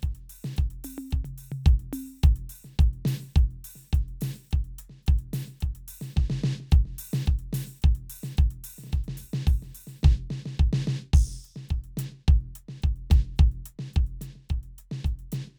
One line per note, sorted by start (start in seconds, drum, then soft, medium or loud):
0.01 closed hi-hat soft
0.01 hi-hat pedal soft
0.05 kick medium
0.11 snare soft
0.15 snare soft
0.15 closed hi-hat soft
0.32 open hi-hat medium
0.47 snare medium
0.56 kick medium
0.56 closed hi-hat medium
0.56 hi-hat pedal soft
0.72 closed hi-hat soft
0.86 open hi-hat medium
0.86 high tom medium
1.00 high tom loud
1.11 kick medium
1.11 closed hi-hat soft
1.11 hi-hat pedal soft
1.27 closed hi-hat soft
1.27 floor tom medium
1.40 kick soft
1.40 open hi-hat medium
1.54 floor tom loud
1.66 kick loud
1.66 closed hi-hat soft
1.66 hi-hat pedal soft
1.81 closed hi-hat soft
1.95 open hi-hat medium
1.95 high tom loud
2.22 kick loud
2.22 closed hi-hat medium
2.22 hi-hat pedal soft
2.38 closed hi-hat soft
2.52 open hi-hat medium
2.67 snare soft
2.77 hi-hat pedal soft
2.81 kick loud
2.81 closed hi-hat medium
2.95 closed hi-hat soft
3.07 open hi-hat medium
3.07 snare loud
3.22 snare soft
3.25 snare soft
3.35 kick loud
3.35 closed hi-hat soft
3.35 hi-hat pedal soft
3.53 closed hi-hat soft
3.67 open hi-hat medium
3.78 snare soft
3.92 kick loud
3.92 snare soft
3.92 hi-hat pedal soft
3.97 closed hi-hat medium
4.10 closed hi-hat soft
4.23 open hi-hat medium
4.23 snare loud
4.38 snare soft
4.51 closed hi-hat soft
4.51 hi-hat pedal soft
4.55 kick medium
4.66 closed hi-hat soft
4.81 open hi-hat medium
4.92 snare soft
5.05 hi-hat pedal soft
5.09 kick loud
5.09 closed hi-hat medium
5.21 closed hi-hat soft
5.36 open hi-hat medium
5.36 snare medium
5.50 snare soft
5.59 snare soft
5.59 closed hi-hat medium
5.59 hi-hat pedal soft
5.65 kick medium
5.77 closed hi-hat soft
5.90 open hi-hat medium
5.90 kick soft
6.03 snare medium
6.16 kick medium
6.16 snare medium
6.16 hi-hat pedal soft
6.32 snare loud
6.45 kick soft
6.45 snare loud
6.62 snare soft
6.72 kick loud
6.72 closed hi-hat medium
6.72 hi-hat pedal soft
6.88 snare soft
7.00 open hi-hat loud
7.16 snare loud
7.24 hi-hat pedal soft
7.28 kick loud
7.28 closed hi-hat soft
7.41 closed hi-hat soft
7.55 open hi-hat medium
7.55 snare loud
7.69 snare soft
7.80 hi-hat pedal soft
7.84 kick loud
7.84 closed hi-hat medium
7.97 closed hi-hat soft
8.12 open hi-hat medium
8.26 snare medium
8.34 hi-hat pedal soft
8.39 kick loud
8.39 closed hi-hat medium
8.53 closed hi-hat soft
8.66 open hi-hat medium
8.81 snare soft
8.86 snare soft
8.89 snare soft
8.89 hi-hat pedal soft
8.92 snare soft
8.94 kick medium
8.94 snare soft
8.94 closed hi-hat soft
9.06 closed hi-hat soft
9.10 snare medium
9.19 open hi-hat medium
9.19 kick soft
9.36 snare loud
9.49 kick loud
9.49 open hi-hat soft
9.65 snare soft
9.77 open hi-hat medium
9.89 snare soft
10.05 kick loud
10.05 snare medium
10.05 hi-hat pedal soft
10.33 snare medium
10.48 snare medium
10.59 kick loud
10.59 hi-hat pedal soft
10.75 snare loud
10.89 snare loud
11.16 kick loud
11.16 crash loud
11.30 snare soft
11.46 closed hi-hat soft
11.58 snare medium
11.71 kick medium
11.71 closed hi-hat soft
11.86 closed hi-hat soft
11.99 closed hi-hat loud
11.99 snare medium
12.14 snare soft
12.30 kick loud
12.30 closed hi-hat soft
12.42 closed hi-hat soft
12.58 closed hi-hat medium
12.71 snare medium
12.84 kick medium
12.84 closed hi-hat soft
12.98 closed hi-hat soft
13.13 closed hi-hat medium
13.13 kick loud
13.13 snare medium
13.27 snare soft
13.38 kick loud
13.38 closed hi-hat soft
13.38 hi-hat pedal soft
13.44 snare soft
13.54 closed hi-hat soft
13.68 closed hi-hat medium
13.81 snare medium
13.96 kick loud
13.96 closed hi-hat soft
14.09 closed hi-hat soft
14.23 closed hi-hat medium
14.23 snare medium
14.38 snare soft
14.52 kick medium
14.52 closed hi-hat soft
14.65 closed hi-hat soft
14.80 closed hi-hat medium
14.94 snare medium
15.07 kick medium
15.07 closed hi-hat soft
15.21 closed hi-hat soft
15.34 closed hi-hat medium
15.34 snare medium
15.50 snare soft